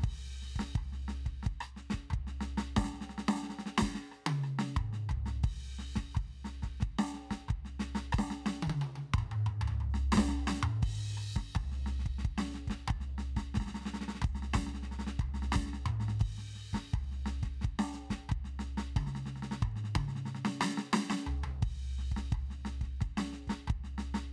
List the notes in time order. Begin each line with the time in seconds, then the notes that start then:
0.01 kick, snare
0.06 snare, crash
0.12 snare
0.39 snare, hi-hat pedal
0.56 kick, snare
0.76 kick, floor tom
0.93 snare
1.09 snare, hi-hat pedal
1.26 kick, snare
1.43 kick, snare
1.61 cross-stick
1.77 snare, hi-hat pedal
1.91 kick, snare
2.11 kick, floor tom
2.28 snare
2.41 snare, hi-hat pedal
2.58 snare
2.77 kick, snare
2.85 kick, snare
2.94 snare
3.01 snare
3.10 snare
3.19 snare
3.29 snare
3.36 snare
3.43 snare
3.50 snare
3.59 snare
3.66 snare
3.78 snare
3.83 kick
3.88 kick
3.95 snare
4.12 cross-stick
4.27 high tom
4.44 cross-stick
4.59 snare
4.77 kick, mid tom
4.93 snare
5.10 kick, floor tom
5.26 snare
5.44 kick, snare, crash
5.79 snare, hi-hat pedal
5.96 kick, snare
6.15 kick, floor tom
6.45 snare, hi-hat pedal
6.63 kick, snare
6.81 kick, snare
6.99 snare
7.13 snare, hi-hat pedal
7.31 kick, snare
7.49 kick, floor tom
7.65 snare
7.80 snare, hi-hat pedal
7.96 snare
8.13 kick, cross-stick
8.19 snare
8.24 kick
8.31 snare
8.46 snare
8.63 high tom
8.68 kick, high tom
8.82 high tom
8.96 high tom
9.14 kick, mid tom
9.19 mid tom
9.32 mid tom
9.47 mid tom
9.62 floor tom
9.68 floor tom
9.81 floor tom
9.90 hi-hat pedal
9.95 snare
10.13 snare
10.17 kick, snare
10.29 snare
10.48 snare
10.63 mid tom
10.83 kick, crash
11.18 cross-stick
11.37 kick, snare
11.56 kick, floor tom
11.72 snare
11.87 snare, hi-hat pedal
12.00 snare
12.06 kick
12.19 snare
12.25 kick
12.38 snare
12.52 snare, hi-hat pedal
12.68 kick, snare
12.88 kick, floor tom
13.01 snare
13.19 snare, hi-hat pedal
13.37 kick, snare
13.55 kick, snare
13.61 snare
13.66 snare
13.68 snare
13.75 snare
13.81 snare
13.86 snare
13.94 snare
14.01 snare
14.09 snare
14.15 snare
14.22 kick, floor tom, hi-hat pedal
14.33 kick, snare
14.43 snare
14.54 kick, snare, hi-hat pedal
14.64 kick, snare
14.74 snare
14.83 snare
14.92 snare
14.99 snare
15.07 snare
15.20 kick, floor tom
15.35 snare
15.43 snare
15.53 kick, snare
15.63 kick, snare
15.74 snare
15.86 mid tom
16.01 snare
16.09 snare
16.20 kick, crash
16.38 snare
16.53 snare, hi-hat pedal
16.74 kick, snare
16.94 kick, floor tom
17.12 snare
17.26 snare, hi-hat pedal
17.43 kick, snare
17.62 kick, snare
17.80 snare
17.93 snare, hi-hat pedal
18.11 kick, snare
18.29 kick, floor tom
18.45 snare
18.60 snare, hi-hat pedal
18.78 snare
18.97 kick, high tom
19.07 kick, snare
19.16 snare
19.26 snare
19.43 snare
19.52 snare
19.63 kick, mid tom
19.71 kick
19.76 snare
19.85 snare
19.96 kick, high tom
20.09 snare
20.16 snare
20.26 snare
20.35 snare
20.46 snare
20.62 snare
20.78 snare
20.94 snare
21.10 snare
21.27 floor tom
21.32 kick
21.44 floor tom
21.63 kick, crash
21.70 crash
21.99 snare
22.12 kick
22.17 snare
22.33 kick, floor tom
22.51 snare
22.66 snare, hi-hat pedal
22.82 kick, snare
23.01 kick, snare
23.18 snare
23.33 snare, hi-hat pedal
23.48 kick, snare
23.68 kick, floor tom
23.84 snare
23.99 snare, hi-hat pedal
24.15 snare